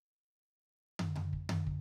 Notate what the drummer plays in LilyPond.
\new DrumStaff \drummode { \time 4/4 \tempo 4 = 122 r4 r4 \tuplet 3/2 { <tommh tomfh>8 <tomfh tommh>8 bd8 <tomfh tommh>8 bd8 r8 } | }